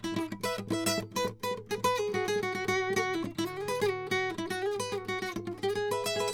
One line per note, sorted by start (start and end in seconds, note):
0.05 0.17 E4
0.17 0.29 E4
0.44 0.59 B4
0.44 0.63 E5
0.71 0.87 E4
0.71 0.84 B4
0.71 0.87 E5
0.87 1.14 E4
0.87 0.97 B4
0.87 1.05 E5
1.17 1.34 E4
1.17 1.30 B4
1.44 1.56 B4
1.85 1.99 B4
1.99 2.15 G#4
2.15 2.32 F#4
2.15 2.27 G#4
2.29 2.50 G#4
2.44 2.53 F#4
2.53 2.67 F#4
2.69 2.93 F#4
2.98 3.15 F#4
3.15 3.25 E4
3.39 3.47 E4
3.49 3.61 F#4
3.62 3.75 G#4
3.69 3.82 B4
3.82 4.09 F#4
4.12 4.37 F#4
4.39 4.49 E4
4.51 4.62 F#4
4.63 4.80 G#4
4.80 4.98 B4
4.93 5.09 F#4
5.09 5.21 F#4
5.23 5.35 F#4
5.37 5.44 F4
5.48 5.61 F4
5.64 5.76 G#4
5.77 6.16 G#4
5.92 6.04 B4
5.92 6.06 E5
6.05 6.21 B4
6.05 6.31 E5
6.16 6.33 G#4
6.21 6.31 B4